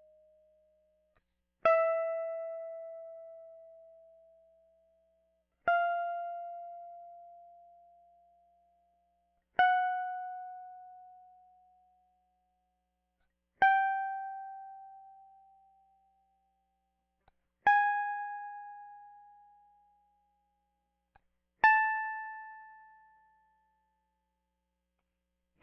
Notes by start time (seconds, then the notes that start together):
1.66 E5
5.67 F5
9.59 F#5
13.62 G5
17.67 G#5
21.64 A5